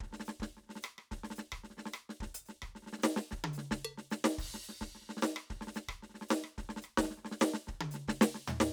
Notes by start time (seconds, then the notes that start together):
0.01 kick, snare
0.12 snare
0.13 snare
0.20 snare
0.26 snare, hi-hat pedal
0.40 kick, snare
0.57 snare
0.63 snare
0.67 snare
0.70 snare
0.76 snare
0.83 cross-stick, hi-hat pedal
0.99 cross-stick
1.12 kick, snare
1.19 kick
1.24 snare
1.31 snare
1.36 snare, hi-hat pedal
1.53 kick, cross-stick
1.64 snare
1.71 snare
1.78 snare
1.86 snare
1.93 cross-stick, hi-hat pedal
2.10 snare
2.21 kick, snare
2.27 kick
2.35 open hi-hat
2.46 snare, hi-hat pedal
2.63 kick, cross-stick
2.76 snare
2.83 snare
2.87 snare
2.93 snare
2.99 snare, hi-hat pedal
3.04 snare
3.17 snare
3.32 kick, snare
3.39 kick
3.45 high tom
3.54 hi-hat pedal
3.59 snare
3.72 kick, snare
3.85 percussion
3.98 snare
4.11 snare, hi-hat pedal
4.25 snare
4.39 kick, crash
4.51 kick, snare
4.64 hi-hat pedal
4.69 snare
4.82 kick, snare
4.96 snare
5.02 snare
5.07 snare
5.10 snare
5.17 snare
5.22 snare, hi-hat pedal
5.37 cross-stick
5.51 kick, snare
5.58 kick, snare
5.68 snare
5.75 snare, hi-hat pedal
5.89 kick, cross-stick
6.03 snare
6.10 snare
6.15 snare
6.22 snare
6.29 snare, hi-hat pedal
6.45 cross-stick
6.59 kick, snare
6.70 snare
6.77 snare
6.82 cross-stick, hi-hat pedal
6.98 kick, snare
7.04 snare
7.11 snare
7.18 snare
7.24 snare
7.32 snare
7.40 snare, hi-hat pedal
7.54 snare
7.68 kick, snare
7.75 kick
7.81 high tom
7.92 snare, hi-hat pedal
8.08 kick, snare
8.22 snare
8.35 snare
8.48 hi-hat pedal, floor tom
8.61 snare